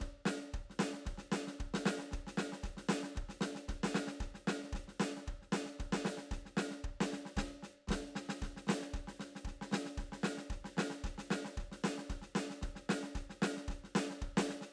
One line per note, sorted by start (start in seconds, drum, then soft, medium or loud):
0.01 kick soft
0.01 snare soft
0.26 snare medium
0.54 kick soft
0.54 snare soft
0.71 snare soft
0.80 snare medium
0.94 snare soft
1.06 kick soft
1.06 snare soft
1.18 snare soft
1.33 snare medium
1.48 snare soft
1.60 kick soft
1.60 snare soft
1.75 snare medium
1.86 snare medium
1.99 snare soft
2.12 kick soft
2.12 snare soft
2.28 snare soft
2.38 snare medium
2.53 snare soft
2.64 kick soft
2.64 snare soft
2.78 snare soft
2.90 snare medium
3.04 snare soft
3.16 kick soft
3.16 snare soft
3.30 snare soft
3.42 snare medium
3.56 snare soft
3.69 kick soft
3.69 snare soft
3.84 snare medium
3.95 snare medium
4.08 snare soft
4.21 kick soft
4.21 snare soft
4.35 snare soft
4.48 snare medium
4.64 snare soft
4.73 kick soft
4.73 snare soft
4.89 snare soft
5.01 snare medium
5.18 snare soft
5.28 kick soft
5.28 snare soft
5.43 snare soft
5.53 snare medium
5.66 snare soft
5.80 kick soft
5.80 snare soft
5.93 snare medium
6.06 snare medium
6.18 snare soft
6.32 kick soft
6.32 snare soft
6.46 snare soft
6.58 snare medium
6.71 snare soft
6.85 kick soft
6.85 snare soft
7.01 snare medium
7.13 snare soft
7.26 snare soft
7.37 kick soft
7.37 snare medium
7.63 snare soft
7.88 kick soft
7.88 snare soft
7.91 snare medium
8.16 snare medium
8.30 snare medium
8.43 kick soft
8.43 snare soft
8.57 snare soft
8.68 snare soft
8.70 snare medium
8.83 snare soft
8.94 kick soft
8.94 snare soft
9.08 snare soft
9.20 snare soft
9.36 snare soft
9.46 kick soft
9.46 snare soft
9.62 snare soft
9.74 snare medium
9.86 snare soft
9.98 kick soft
9.98 snare soft
10.13 snare soft
10.24 snare medium
10.38 snare soft
10.51 kick soft
10.51 snare soft
10.65 snare soft
10.78 snare soft
10.78 snare medium
10.91 snare soft
11.05 kick soft
11.05 snare soft
11.19 snare soft
11.31 snare medium
11.46 snare soft
11.58 kick soft
11.58 snare soft
11.72 snare soft
11.85 snare medium
11.99 snare soft
12.10 kick soft
12.10 snare soft
12.23 snare soft
12.36 snare medium
12.51 snare soft
12.62 kick soft
12.62 snare soft
12.76 snare soft
12.90 snare medium
13.04 snare soft
13.16 kick soft
13.16 snare soft
13.30 snare soft
13.43 snare medium
13.58 snare soft
13.69 kick soft
13.69 snare soft
13.85 snare soft
13.96 snare loud
14.11 snare soft
14.22 kick soft
14.22 snare soft
14.38 snare loud
14.50 snare soft
14.62 snare soft